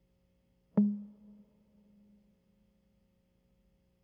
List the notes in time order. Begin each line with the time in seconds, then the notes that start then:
0.78 G#3